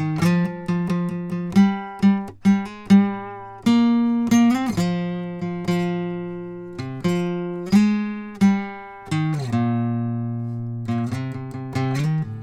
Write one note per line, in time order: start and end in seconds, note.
0.00 0.23 D#3
0.24 0.46 F3
0.46 0.69 F3
0.70 0.90 F3
0.91 1.10 F3
1.11 1.33 F3
1.33 1.55 F3
1.57 2.02 G3
2.04 2.32 G3
2.46 2.66 G3
2.67 2.89 G#3
2.91 3.63 G3
3.67 4.32 A#3
4.33 4.52 A#3
4.52 4.74 C4
4.79 5.42 F3
5.43 5.69 F3
5.69 6.85 F3
6.80 7.05 C3
7.05 7.71 F3
7.74 8.39 G#3
8.42 9.17 G3
9.12 9.51 D#3
9.54 10.88 A#2
10.89 11.11 A#2
11.13 11.34 C3
11.35 11.54 C3
11.56 11.75 C3
11.77 11.97 C3
11.97 12.23 D#3
12.23 12.43 A2